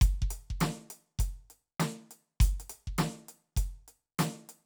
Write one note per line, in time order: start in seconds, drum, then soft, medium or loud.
0.01 kick loud
0.01 closed hi-hat loud
0.22 kick medium
0.30 closed hi-hat loud
0.50 kick medium
0.60 snare loud
0.60 closed hi-hat loud
0.90 closed hi-hat loud
1.19 kick medium
1.19 closed hi-hat loud
1.50 closed hi-hat medium
1.80 snare loud
1.80 closed hi-hat loud
2.11 closed hi-hat medium
2.40 closed hi-hat loud
2.40 kick loud
2.60 closed hi-hat medium
2.69 closed hi-hat loud
2.87 kick medium
2.98 snare loud
2.98 closed hi-hat loud
3.28 closed hi-hat medium
3.56 kick medium
3.56 closed hi-hat loud
3.88 closed hi-hat medium
4.19 closed hi-hat loud
4.19 snare loud
4.49 closed hi-hat medium